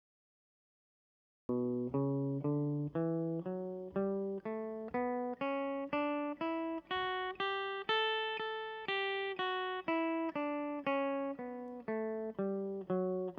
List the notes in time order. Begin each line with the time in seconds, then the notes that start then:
1.47 B2
1.96 C#3
2.46 D3
2.97 E3
3.47 F#3
3.97 G3
4.46 A3
4.95 B3
5.42 C#4
5.94 D4
6.42 E4
6.92 F#4
7.41 G4
7.90 A4
8.89 G4
9.40 F#4
9.89 E4
10.36 D4
10.88 C#4
11.40 B3
11.89 A3
12.40 G3
12.91 F#3